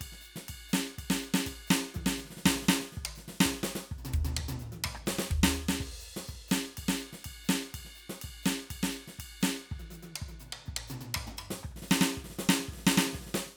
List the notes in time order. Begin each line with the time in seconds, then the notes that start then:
0.01 kick, ride bell
0.13 snare
0.21 hi-hat pedal, ride
0.36 snare
0.49 kick, ride bell
0.69 hi-hat pedal
0.74 snare
0.98 kick, ride bell
1.04 kick
1.10 snare
1.18 hi-hat pedal
1.23 ride
1.34 snare
1.47 kick, ride bell
1.53 kick
1.67 snare, hi-hat pedal
1.95 kick, high tom
2.02 kick
2.06 kick, snare
2.17 snare, hi-hat pedal
2.26 snare
2.31 snare
2.37 snare
2.46 kick, snare
2.56 snare
2.63 snare
2.68 snare, hi-hat pedal
2.81 snare
2.93 snare
2.97 kick
3.04 kick, high tom
3.16 snare, hi-hat pedal
3.28 snare
3.33 snare
3.41 snare
3.45 kick
3.52 kick, snare
3.64 snare, hi-hat pedal
3.76 snare
3.92 kick
3.98 kick, mid tom
4.05 mid tom
4.13 hi-hat pedal, mid tom
4.25 mid tom
4.34 hi-hat pedal, mid tom
4.40 kick
4.46 kick, mid tom
4.59 floor tom, hi-hat pedal
4.72 high tom
4.84 kick, floor tom
4.92 kick, cross-stick
5.07 snare, hi-hat pedal
5.19 snare
5.31 kick, mid tom
5.37 kick
5.44 snare
5.54 hi-hat pedal
5.69 snare
5.80 kick, crash
6.01 hi-hat pedal
6.17 snare
6.28 kick, ride, floor tom
6.35 kick
6.48 snare, hi-hat pedal
6.78 kick, ride bell
6.85 kick, snare
6.97 hi-hat pedal, ride
7.13 snare
7.25 kick, ride bell
7.32 kick
7.44 hi-hat pedal
7.49 snare
7.74 kick, ride bell
7.81 kick
7.85 snare
7.95 hi-hat pedal, ride
8.10 snare
8.22 kick, ride bell
8.30 kick
8.43 snare, hi-hat pedal
8.71 kick, ride bell
8.77 kick
8.83 snare
8.91 hi-hat pedal, ride
9.08 snare
9.19 kick, ride bell
9.25 kick
9.41 snare, hi-hat pedal
9.72 kick
9.78 kick, high tom
9.82 kick
9.91 hi-hat pedal, high tom
10.03 high tom
10.16 high tom
10.22 kick
10.29 kick, high tom
10.40 hi-hat pedal, mid tom
10.53 mid tom
10.66 kick, mid tom
10.75 kick, mid tom
10.88 hi-hat pedal, mid tom
11.01 mid tom
11.15 kick, floor tom
11.23 kick, floor tom
11.38 hi-hat pedal, floor tom
11.51 snare
11.63 kick, cross-stick
11.68 kick, cross-stick, snare
11.76 snare
11.82 snare
11.88 snare, hi-hat pedal
12.01 snare
12.11 snare
12.17 kick, snare
12.25 snare
12.30 snare
12.39 snare, hi-hat pedal
12.49 snare
12.59 snare
12.65 kick, snare
12.71 kick, snare
12.78 snare
12.82 snare
12.87 snare, hi-hat pedal
12.98 snare
13.07 snare
13.13 kick, snare
13.19 kick, snare
13.21 snare
13.27 snare
13.35 snare, hi-hat pedal
13.47 snare